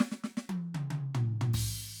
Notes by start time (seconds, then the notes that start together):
0.01 snare
0.11 snare
0.24 snare
0.37 snare
0.49 high tom
0.74 mid tom
0.90 mid tom
1.15 floor tom
1.41 floor tom
1.53 kick, crash